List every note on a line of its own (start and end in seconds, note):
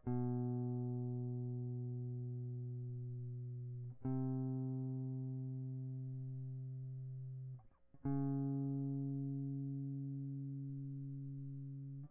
0.08 3.95 B2
4.06 7.59 C3
8.06 12.08 C#3